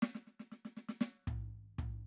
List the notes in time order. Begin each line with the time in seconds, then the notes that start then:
0.03 snare, percussion
0.15 snare
0.27 snare
0.40 snare
0.52 snare
0.65 snare
0.77 snare
0.89 snare
1.01 snare
1.27 kick, floor tom
1.79 kick, floor tom